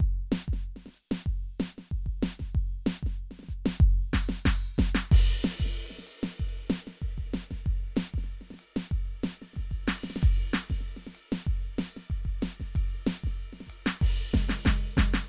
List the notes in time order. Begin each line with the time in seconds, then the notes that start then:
0.01 kick, crash
0.33 snare, hi-hat pedal, crash
0.49 kick
0.54 snare
0.62 crash
0.77 snare
0.87 snare
0.89 snare
0.95 hi-hat pedal, crash
1.12 snare
1.27 kick, crash
1.44 crash
1.60 snare, hi-hat pedal, crash
1.79 snare
1.92 kick, crash
2.07 kick, crash
2.22 snare, hi-hat pedal, crash
2.40 kick, snare
2.56 kick, crash
2.87 snare, hi-hat pedal, crash
3.04 kick, snare
3.18 crash
3.32 snare
3.40 snare
3.44 snare
3.49 kick, hi-hat pedal, crash
3.66 snare
3.80 kick, hi-hat pedal, crash
4.14 open hi-hat, kick, snare
4.30 snare, open hi-hat
4.46 open hi-hat, kick, snare
4.79 kick, snare
4.95 snare
5.12 kick, ride
5.45 snare, hi-hat pedal, ride
5.61 kick
5.66 snare
5.75 ride
5.91 snare
5.99 snare
6.05 hi-hat pedal, ride
6.24 snare
6.39 kick, ride
6.55 ride
6.70 snare, hi-hat pedal, ride
6.88 snare
7.03 kick, ride
7.19 kick, crash, ride
7.34 snare, hi-hat pedal, ride
7.52 kick, snare
7.67 kick, ride
7.97 snare, hi-hat pedal, ride
8.15 kick, snare
8.25 snare, ride
8.42 snare
8.51 kick, snare
8.55 snare
8.60 hi-hat pedal, ride
8.77 snare
8.92 kick, ride
9.07 ride
9.24 snare, hi-hat pedal, ride
9.42 snare
9.54 kick, snare, ride
9.60 snare
9.72 kick, ride
9.88 snare, hi-hat pedal, ride
10.04 snare
10.11 snare
10.17 snare
10.23 kick, ride
10.54 snare, hi-hat pedal, ride
10.71 kick, snare
10.81 snare, ride
10.93 kick, snare
11.16 hi-hat pedal, ride
11.33 snare
11.47 kick, ride
11.63 ride
11.79 snare, hi-hat pedal, ride bell
11.97 snare
12.11 kick, ride
12.26 kick, ride
12.42 snare, hi-hat pedal, ride
12.61 kick, snare
12.76 kick, ride
13.07 snare, hi-hat pedal, ride
13.24 kick, snare
13.38 ride
13.53 snare
13.61 snare
13.68 kick, hi-hat pedal, ride
13.87 snare
14.02 kick, ride
14.34 kick, snare, mid tom
14.49 snare, mid tom
14.66 kick, snare, hi-hat pedal, mid tom
14.96 kick, snare, hi-hat pedal, mid tom
15.14 snare